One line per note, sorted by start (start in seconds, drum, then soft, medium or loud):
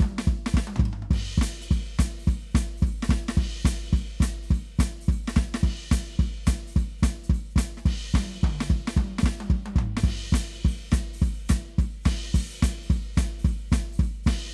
0.01 kick loud
0.01 high tom loud
0.19 snare loud
0.24 kick loud
0.24 hi-hat pedal soft
0.47 snare loud
0.47 hi-hat pedal soft
0.54 kick loud
0.54 snare loud
0.68 high tom loud
0.73 floor tom loud
0.73 hi-hat pedal soft
0.80 kick loud
0.86 floor tom medium
0.93 floor tom loud
1.03 kick soft
1.03 floor tom medium
1.11 kick loud
1.11 crash loud
1.37 kick loud
1.37 hi-hat pedal medium
1.42 closed hi-hat loud
1.42 snare loud
1.62 open hi-hat medium
1.71 open hi-hat medium
1.71 kick loud
1.96 kick loud
1.96 snare loud
1.96 hi-hat pedal soft
2.00 closed hi-hat loud
2.19 open hi-hat medium
2.28 open hi-hat medium
2.28 kick loud
2.52 kick loud
2.52 snare loud
2.52 hi-hat pedal soft
2.57 closed hi-hat loud
2.78 open hi-hat medium
2.83 open hi-hat medium
2.83 kick loud
3.03 snare loud
3.03 hi-hat pedal soft
3.10 kick loud
3.10 snare loud
3.29 snare loud
3.38 kick loud
3.38 crash loud
3.61 kick loud
3.61 hi-hat pedal soft
3.66 closed hi-hat loud
3.66 snare loud
3.93 open hi-hat medium
3.93 kick loud
4.18 kick loud
4.18 hi-hat pedal soft
4.23 closed hi-hat loud
4.23 snare loud
4.43 open hi-hat soft
4.51 open hi-hat medium
4.51 kick loud
4.78 closed hi-hat loud
4.78 kick loud
4.78 snare loud
4.78 hi-hat pedal soft
5.01 open hi-hat medium
5.09 open hi-hat medium
5.09 kick loud
5.28 snare loud
5.28 hi-hat pedal soft
5.37 kick loud
5.37 snare loud
5.54 snare loud
5.64 kick loud
5.64 crash loud
5.89 closed hi-hat loud
5.89 kick loud
5.89 snare loud
5.89 hi-hat pedal soft
6.20 open hi-hat soft
6.20 kick loud
6.44 closed hi-hat loud
6.44 kick loud
6.44 snare loud
6.44 hi-hat pedal soft
6.68 open hi-hat medium
6.77 open hi-hat medium
6.77 kick loud
6.99 hi-hat pedal soft
7.03 closed hi-hat loud
7.03 kick loud
7.03 snare loud
7.24 closed hi-hat medium
7.30 open hi-hat medium
7.30 kick loud
7.51 hi-hat pedal soft
7.56 closed hi-hat loud
7.56 kick loud
7.56 snare loud
7.78 snare medium
7.86 kick loud
7.86 crash loud
8.10 hi-hat pedal soft
8.14 kick loud
8.14 snare loud
8.14 high tom loud
8.44 kick loud
8.44 mid tom loud
8.61 snare loud
8.61 hi-hat pedal soft
8.70 kick loud
8.88 snare loud
8.97 kick loud
8.97 high tom loud
9.19 snare loud
9.19 hi-hat pedal soft
9.24 kick loud
9.24 snare loud
9.41 high tom loud
9.50 kick loud
9.66 high tom loud
9.76 kick loud
9.76 floor tom loud
9.97 snare loud
10.04 kick loud
10.04 crash loud
10.33 closed hi-hat loud
10.33 kick loud
10.33 snare loud
10.33 hi-hat pedal medium
10.54 open hi-hat soft
10.65 kick loud
10.65 open hi-hat medium
10.89 kick loud
10.89 snare loud
10.89 hi-hat pedal medium
10.94 closed hi-hat loud
11.14 open hi-hat medium
11.22 open hi-hat medium
11.22 kick loud
11.47 closed hi-hat loud
11.47 kick loud
11.47 snare loud
11.47 hi-hat pedal soft
11.79 open hi-hat medium
11.79 kick loud
12.04 kick loud
12.04 snare loud
12.04 hi-hat pedal medium
12.04 crash loud
12.35 open hi-hat loud
12.35 kick loud
12.61 closed hi-hat loud
12.61 kick loud
12.61 snare loud
12.61 hi-hat pedal medium
12.82 open hi-hat soft
12.90 open hi-hat medium
12.90 kick loud
13.16 closed hi-hat loud
13.16 kick loud
13.16 snare loud
13.16 hi-hat pedal medium
13.39 open hi-hat medium
13.45 open hi-hat medium
13.45 kick loud
13.71 closed hi-hat loud
13.71 kick loud
13.71 snare loud
13.71 hi-hat pedal medium
13.93 open hi-hat medium
14.00 open hi-hat medium
14.00 kick loud
14.24 kick loud
14.24 snare loud
14.24 hi-hat pedal medium
14.24 crash loud